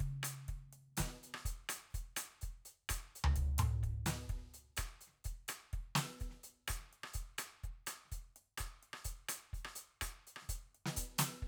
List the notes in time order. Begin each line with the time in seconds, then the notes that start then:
0.01 kick, closed hi-hat
0.24 closed hi-hat, cross-stick
0.41 snare
0.49 kick, closed hi-hat
0.54 snare
0.73 closed hi-hat
0.98 closed hi-hat, kick, snare
1.08 snare
1.24 closed hi-hat
1.35 cross-stick
1.46 closed hi-hat, kick
1.70 closed hi-hat, cross-stick
1.91 closed hi-hat, kick, hi-hat pedal
2.17 closed hi-hat, cross-stick
2.42 closed hi-hat, kick
2.66 closed hi-hat
2.90 closed hi-hat, kick, cross-stick
3.16 closed hi-hat
3.25 floor tom
3.36 kick, closed hi-hat
3.59 closed hi-hat, mid tom
3.84 kick, closed hi-hat
4.07 closed hi-hat, snare
4.30 kick, closed hi-hat
4.38 snare
4.44 snare
4.54 closed hi-hat
4.77 closed hi-hat, kick, cross-stick
5.01 closed hi-hat
5.08 snare
5.12 snare
5.25 closed hi-hat, kick
5.49 closed hi-hat, cross-stick
5.74 kick, closed hi-hat
5.96 closed hi-hat, snare
6.02 snare
6.21 closed hi-hat, kick
6.31 snare
6.36 snare
6.44 closed hi-hat
6.68 open hi-hat, kick, cross-stick
6.80 snare
6.93 closed hi-hat
7.04 cross-stick
7.14 closed hi-hat, kick
7.39 closed hi-hat, cross-stick
7.64 open hi-hat, kick
7.87 closed hi-hat, cross-stick
8.06 snare
8.12 closed hi-hat, kick
8.37 closed hi-hat
8.58 open hi-hat, kick, cross-stick
8.83 closed hi-hat
8.94 cross-stick
9.05 closed hi-hat, kick
9.29 closed hi-hat, cross-stick
9.54 open hi-hat, kick
9.65 cross-stick
9.76 closed hi-hat
10.02 open hi-hat, kick, cross-stick
10.28 closed hi-hat
10.37 cross-stick
10.43 snare
10.50 closed hi-hat, kick
10.75 open hi-hat
10.86 snare
10.97 closed hi-hat, kick
11.19 closed hi-hat, snare
11.43 kick